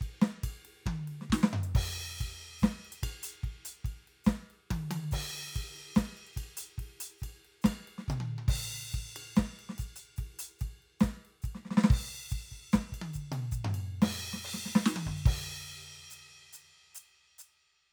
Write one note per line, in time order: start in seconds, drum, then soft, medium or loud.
0.01 kick medium
0.01 ride bell medium
0.22 snare loud
0.43 kick medium
0.43 ride bell loud
0.65 ride medium
0.86 kick medium
0.86 high tom loud
1.08 ride soft
1.21 snare soft
1.30 kick medium
1.30 snare loud
1.43 snare loud
1.53 floor tom loud
1.63 closed hi-hat medium
1.75 kick loud
1.75 crash loud
2.18 kick medium
2.18 hi-hat pedal medium
2.18 ride bell medium
2.42 ride soft
2.59 kick medium
2.59 hi-hat pedal medium
2.63 snare loud
2.63 ride bell medium
2.85 ride soft
2.92 closed hi-hat medium
3.03 kick medium
3.03 ride bell loud
3.23 closed hi-hat loud
3.43 kick medium
3.43 ride soft
3.65 closed hi-hat loud
3.85 kick medium
3.85 ride bell medium
4.08 ride soft
4.24 kick medium
4.24 snare loud
4.24 hi-hat pedal medium
4.29 ride bell medium
4.50 ride soft
4.71 kick medium
4.71 high tom loud
4.71 ride medium
4.91 high tom loud
4.91 ride bell medium
5.11 kick medium
5.11 hi-hat pedal medium
5.11 crash loud
5.34 ride medium
5.54 kick medium
5.54 hi-hat pedal medium
5.54 ride medium
5.76 ride soft
5.95 kick medium
5.95 snare loud
5.95 hi-hat pedal medium
5.95 ride bell medium
6.17 ride bell soft
6.27 open hi-hat soft
6.33 kick medium
6.33 hi-hat pedal soft
6.38 ride bell medium
6.57 closed hi-hat loud
6.78 kick soft
6.78 ride medium
7.00 open hi-hat loud
7.18 kick soft
7.18 hi-hat pedal soft
7.24 ride bell medium
7.45 ride soft
7.62 kick soft
7.62 snare loud
7.62 hi-hat pedal soft
7.66 ride bell loud
7.88 ride soft
7.98 snare medium
8.08 kick medium
8.08 hi-hat pedal soft
8.08 mid tom loud
8.20 high tom medium
8.38 high tom medium
8.48 kick loud
8.48 crash loud
8.91 kick medium
8.91 hi-hat pedal medium
9.16 ride bell loud
9.36 kick medium
9.36 snare loud
9.36 hi-hat pedal medium
9.59 ride soft
9.69 snare medium
9.78 kick medium
9.78 hi-hat pedal medium
9.78 ride bell medium
9.96 closed hi-hat medium
10.16 kick medium
10.16 hi-hat pedal soft
10.16 ride medium
10.39 closed hi-hat loud
10.59 kick medium
10.59 hi-hat pedal soft
10.59 ride bell medium
10.82 ride soft
11.00 kick medium
11.00 snare loud
11.00 hi-hat pedal medium
11.00 ride bell medium
11.25 ride soft
11.42 kick medium
11.42 hi-hat pedal soft
11.42 ride bell medium
11.55 snare soft
11.65 snare soft
11.71 snare medium
11.77 snare loud
11.84 snare loud
11.90 kick loud
11.90 crash loud
12.29 kick medium
12.29 hi-hat pedal medium
12.52 kick soft
12.52 snare soft
12.52 floor tom soft
12.52 mid tom soft
12.52 ride soft
12.72 kick medium
12.72 snare loud
12.72 hi-hat pedal medium
12.92 kick soft
12.92 ride bell medium
13.02 high tom loud
13.13 kick soft
13.13 hi-hat pedal medium
13.32 mid tom loud
13.32 ride bell medium
13.52 kick medium
13.52 hi-hat pedal medium
13.65 floor tom loud
13.74 ride bell medium
14.02 snare loud
14.02 crash loud
14.33 snare medium
14.44 crash loud
14.54 snare medium
14.65 snare medium
14.75 snare loud
14.86 snare loud
14.86 hi-hat pedal medium
14.96 high tom loud
15.06 kick soft
15.06 floor tom medium
15.16 open hi-hat medium
15.26 kick loud
15.26 crash loud
16.10 hi-hat pedal medium
16.53 hi-hat pedal medium
16.95 hi-hat pedal loud
17.38 hi-hat pedal medium